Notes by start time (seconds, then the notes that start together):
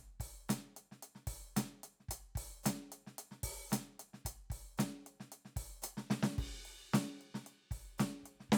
0.20 kick, open hi-hat
0.49 snare, closed hi-hat, hi-hat pedal
0.76 closed hi-hat
0.91 snare
1.03 closed hi-hat
1.15 snare
1.27 kick, open hi-hat
1.56 snare, closed hi-hat, hi-hat pedal
1.83 closed hi-hat
2.00 snare
2.09 kick, closed hi-hat
2.35 kick, open hi-hat
2.64 snare, closed hi-hat, hi-hat pedal
2.92 closed hi-hat
3.07 snare
3.18 closed hi-hat
3.31 snare
3.43 kick, open hi-hat
3.70 snare, closed hi-hat, hi-hat pedal
3.99 closed hi-hat
4.13 snare
4.25 kick, closed hi-hat
4.50 kick, open hi-hat
4.78 snare, closed hi-hat, hi-hat pedal
5.06 closed hi-hat
5.20 snare
5.32 closed hi-hat
5.45 snare
5.56 kick, open hi-hat
5.82 closed hi-hat, hi-hat pedal
5.97 snare
6.10 snare
6.23 snare
6.38 kick, crash
6.65 open hi-hat
6.93 snare, closed hi-hat, hi-hat pedal
7.21 closed hi-hat
7.34 snare
7.46 closed hi-hat
7.71 kick, open hi-hat
7.98 snare, closed hi-hat, hi-hat pedal
8.20 kick, snare
8.26 closed hi-hat
8.40 snare
8.45 snare
8.49 kick, snare